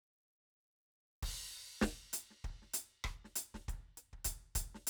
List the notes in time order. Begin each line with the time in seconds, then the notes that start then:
1.22 kick, crash
1.51 closed hi-hat
1.81 kick, snare
2.13 closed hi-hat
2.30 snare
2.44 closed hi-hat, kick
2.62 snare
2.74 closed hi-hat
3.04 kick, cross-stick
3.24 snare
3.36 closed hi-hat
3.54 kick, snare
3.68 kick, closed hi-hat
3.97 closed hi-hat
4.13 kick
4.24 closed hi-hat, kick
4.55 closed hi-hat, kick
4.74 snare
4.87 closed hi-hat